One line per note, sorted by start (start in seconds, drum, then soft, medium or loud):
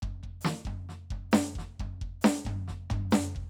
0.02 kick medium
0.02 mid tom medium
0.23 kick soft
0.23 mid tom soft
0.41 snare loud
0.41 hi-hat pedal medium
0.65 kick medium
0.65 mid tom loud
0.89 snare soft
1.10 kick medium
1.10 mid tom medium
1.31 snare loud
1.31 hi-hat pedal medium
1.31 mid tom medium
1.55 kick medium
1.55 snare medium
1.79 kick medium
1.79 mid tom medium
2.01 kick medium
2.01 mid tom soft
2.21 snare loud
2.21 hi-hat pedal medium
2.45 kick medium
2.45 mid tom loud
2.68 kick soft
2.68 snare soft
2.90 kick medium
2.90 mid tom loud
3.11 snare loud
3.11 hi-hat pedal medium
3.11 mid tom loud
3.35 kick medium
3.35 floor tom medium